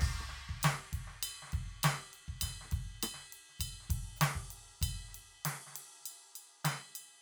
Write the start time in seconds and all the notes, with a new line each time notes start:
0.01 kick, hi-hat pedal, crash
0.07 kick
0.13 kick
0.20 cross-stick
0.29 snare
0.49 kick
0.62 snare, hi-hat pedal, ride bell
0.93 kick, ride
1.07 snare
1.22 hi-hat pedal, ride bell
1.42 snare
1.47 snare
1.51 kick, snare, ride
1.60 kick
1.83 snare, hi-hat pedal, ride bell
2.13 ride
2.28 kick
2.40 kick, snare, hi-hat pedal, ride bell
2.61 cross-stick, snare
2.70 kick, snare, ride
2.78 kick
2.82 kick
3.01 cross-stick, hi-hat pedal, ride bell
3.14 snare
3.32 ride
3.49 snare
3.59 kick, snare, hi-hat pedal, ride bell
3.80 snare
3.83 snare
3.90 kick, ride
3.97 kick
4.16 hi-hat pedal
4.21 snare, ride
4.35 kick, snare
4.50 ride
4.81 kick, hi-hat pedal, ride bell
4.88 kick
4.92 kick
5.08 snare
5.14 ride
5.45 snare, hi-hat pedal, ride
5.67 snare
5.72 snare, ride
6.00 snare
6.02 snare, ride bell
6.35 ride bell
6.64 snare, hi-hat pedal, ride bell
6.95 ride bell